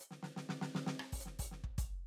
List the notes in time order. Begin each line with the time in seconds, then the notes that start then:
0.00 hi-hat pedal
0.11 snare
0.23 snare
0.37 snare
0.49 snare
0.62 snare
0.75 snare
0.87 snare
1.00 cross-stick
1.12 open hi-hat, kick
1.20 hi-hat pedal
1.26 snare
1.39 open hi-hat, kick
1.44 hi-hat pedal
1.52 snare
1.64 kick
1.78 open hi-hat, kick